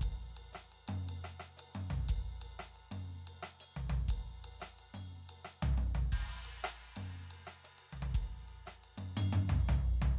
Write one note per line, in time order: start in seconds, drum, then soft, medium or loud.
0.01 kick medium
0.01 ride loud
0.36 ride loud
0.52 cross-stick medium
0.52 hi-hat pedal medium
0.72 ride medium
0.88 mid tom loud
0.88 ride loud
1.08 ride loud
1.24 cross-stick medium
1.39 cross-stick medium
1.57 hi-hat pedal medium
1.57 ride loud
1.75 mid tom medium
1.90 floor tom loud
2.08 kick medium
2.08 ride loud
2.41 ride loud
2.59 cross-stick medium
2.59 hi-hat pedal medium
2.76 ride medium
2.91 mid tom medium
2.91 ride loud
3.27 ride loud
3.42 cross-stick medium
3.60 hi-hat pedal medium
3.60 ride bell medium
3.76 floor tom medium
3.89 floor tom loud
4.08 kick medium
4.08 ride loud
4.44 ride loud
4.60 cross-stick medium
4.60 hi-hat pedal medium
4.78 ride medium
4.94 mid tom medium
4.94 ride bell medium
5.29 ride loud
5.44 cross-stick medium
5.62 floor tom loud
5.62 hi-hat pedal medium
5.77 mid tom medium
5.95 floor tom medium
6.12 kick medium
6.12 ride medium
6.45 ride loud
6.63 cross-stick medium
6.63 hi-hat pedal medium
6.80 ride soft
6.96 mid tom medium
6.96 ride loud
7.30 ride loud
7.47 cross-stick medium
7.64 hi-hat pedal medium
7.64 ride medium
7.78 ride medium
7.92 kick soft
7.92 floor tom medium
8.02 floor tom medium
8.14 kick medium
8.14 ride loud
8.48 ride medium
8.66 cross-stick medium
8.66 hi-hat pedal medium
8.83 ride medium
8.97 mid tom medium
8.97 ride loud
9.17 mid tom loud
9.17 ride bell loud
9.32 mid tom loud
9.49 floor tom loud
9.68 floor tom loud
9.68 hi-hat pedal medium
10.01 floor tom loud